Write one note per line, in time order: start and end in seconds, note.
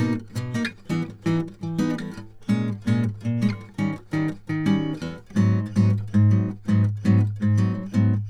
0.00 0.18 B2
0.00 0.26 A#3
0.00 0.26 D#4
0.00 0.23 F#4
0.37 0.62 B2
0.56 0.70 A#3
0.56 0.69 D#4
0.56 0.66 F#4
0.91 1.07 E3
0.91 1.09 B3
0.91 1.05 D4
0.91 1.09 G#4
1.27 1.49 E3
1.27 1.45 B3
1.27 1.48 D#4
1.27 1.48 G#4
1.65 2.00 E3
1.80 2.00 B3
1.80 1.99 D#4
1.80 2.03 G#4
2.50 2.74 A#2
2.50 2.75 G#3
2.50 2.75 C#4
2.50 2.75 E4
2.88 3.12 A#2
2.88 3.10 G#3
2.88 3.10 C#4
2.88 3.13 D#4
3.27 3.53 A#2
3.43 3.52 G#3
3.43 3.52 C#4
3.43 3.51 D#4
3.70 3.83 F#4
3.80 4.00 D#3
3.80 3.96 G3
3.80 4.00 C#4
4.14 4.35 D#3
4.14 4.33 G3
4.14 4.36 C#4
4.14 4.34 F#4
4.51 5.01 D#3
4.67 4.98 G3
4.67 5.00 C#4
4.67 4.99 F#4
5.03 5.22 E2
5.32 5.64 D#4
5.38 5.73 G#2
5.38 5.64 F#3
5.38 5.65 B3
5.77 5.95 G#2
5.77 5.98 F#3
5.77 5.97 B3
5.77 5.96 D#4
6.16 6.58 G#2
6.33 6.56 F#3
6.33 6.56 B3
6.33 6.55 D#4
6.70 6.92 G#2
6.70 6.93 F#3
6.70 6.92 B3
6.70 6.91 D#4
7.07 7.25 G#2
7.07 7.27 F#3
7.07 7.31 B3
7.07 7.28 D#4
7.44 7.88 G#2
7.60 7.75 F#3
7.60 7.83 B3
7.60 7.78 D#4
7.76 7.89 F#3
7.95 8.21 G#2
7.95 8.20 F#3
7.95 8.21 B3